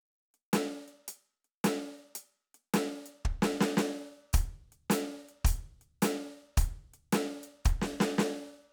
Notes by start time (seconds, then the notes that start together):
0.34 closed hi-hat
0.53 snare, closed hi-hat
0.88 closed hi-hat
1.08 closed hi-hat
1.44 closed hi-hat
1.64 snare, closed hi-hat
1.98 closed hi-hat
2.15 closed hi-hat
2.54 closed hi-hat
2.74 snare, closed hi-hat
3.06 closed hi-hat
3.25 kick
3.42 snare
3.61 snare
3.77 snare
4.33 closed hi-hat, kick
4.72 closed hi-hat
4.90 closed hi-hat, snare
5.29 closed hi-hat
5.45 closed hi-hat, kick
5.81 closed hi-hat
6.02 closed hi-hat, snare
6.57 closed hi-hat, kick
6.94 closed hi-hat
7.12 snare, closed hi-hat
7.43 closed hi-hat
7.65 closed hi-hat, kick
7.82 snare
8.00 snare
8.18 snare